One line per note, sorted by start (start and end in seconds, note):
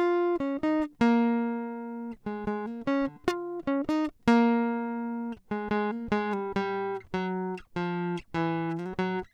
0.01 0.40 F4
0.42 0.60 C#4
0.64 0.90 D#4
1.02 2.17 A#3
2.27 2.48 G#3
2.49 2.67 G#3
2.67 2.86 A#3
2.88 3.11 C#4
3.29 3.64 F4
3.69 3.86 C#4
3.90 4.14 D#4
4.28 5.38 A#3
5.52 5.73 G#3
5.73 5.92 G#3
5.92 6.10 A#3
6.13 6.34 G#3
6.34 6.55 G3
6.57 7.02 G3
7.15 7.66 F#3
7.77 8.26 F3
8.35 8.80 E3
8.80 8.96 F#3
9.00 9.25 F#3